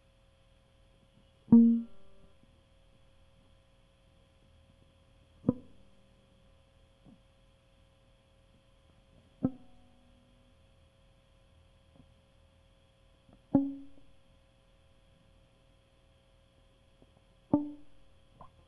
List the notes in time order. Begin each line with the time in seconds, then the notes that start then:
1.53 A#3
5.50 B3
9.45 C4
13.56 C#4
17.54 D4